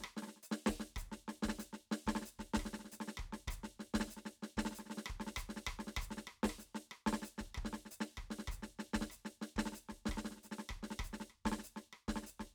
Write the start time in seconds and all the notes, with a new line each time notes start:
0.01 kick, snare
0.05 cross-stick
0.17 snare
0.23 snare
0.28 snare
0.37 snare
0.44 cross-stick, hi-hat pedal
0.52 snare
0.67 kick, snare
0.80 snare
0.97 kick, cross-stick, hi-hat pedal
1.12 snare
1.29 snare
1.43 kick, snare
1.49 snare
1.59 snare, hi-hat pedal
1.74 snare
1.92 snare
2.07 kick, snare
2.16 snare
2.22 snare, hi-hat pedal
2.40 kick, snare
2.54 kick, snare
2.60 cross-stick
2.66 snare
2.74 snare
2.80 snare
2.85 snare
2.92 snare, hi-hat pedal
3.01 snare
3.08 snare
3.18 kick, cross-stick
3.33 snare
3.48 kick, cross-stick, hi-hat pedal
3.56 kick
3.64 snare
3.80 snare
3.95 kick, snare
4.01 snare
4.08 snare, hi-hat pedal
4.17 snare
4.26 snare
4.43 snare
4.58 kick, snare
4.66 snare
4.72 snare, hi-hat pedal
4.80 snare
4.86 snare
4.91 snare
4.98 snare
5.07 kick, cross-stick
5.21 snare
5.27 snare
5.37 kick, cross-stick, hi-hat pedal
5.50 snare
5.57 snare
5.67 kick, cross-stick
5.80 snare
5.88 snare
5.97 kick, cross-stick
6.02 hi-hat pedal
6.11 snare
6.18 snare
6.28 cross-stick
6.44 kick, snare
6.50 cross-stick
6.59 snare, hi-hat pedal
6.76 snare
6.92 cross-stick
7.07 kick, snare
7.14 snare
7.23 snare, hi-hat pedal
7.39 kick, snare
7.55 kick, cross-stick
7.66 snare
7.74 snare
7.86 snare
7.92 hi-hat pedal
8.01 snare
8.18 kick, cross-stick
8.31 snare
8.39 snare
8.48 kick, cross-stick, hi-hat pedal
8.55 kick
8.63 snare
8.80 snare
8.94 kick, snare
9.02 snare
9.11 cross-stick, hi-hat pedal
9.26 snare
9.42 snare
9.57 kick, snare
9.66 snare
9.73 snare, hi-hat pedal
9.90 kick, snare
10.06 kick, snare
10.12 cross-stick
10.18 snare
10.25 snare
10.32 snare
10.37 snare
10.44 snare, hi-hat pedal
10.52 snare
10.59 snare
10.70 kick, cross-stick
10.84 snare
10.91 snare
11.00 kick, cross-stick
11.05 hi-hat pedal
11.14 snare
11.21 snare
11.31 cross-stick
11.46 kick, snare
11.52 snare
11.60 snare
11.65 hi-hat pedal
11.77 snare
11.94 cross-stick
12.09 kick, snare
12.17 snare
12.23 snare, hi-hat pedal
12.40 kick, snare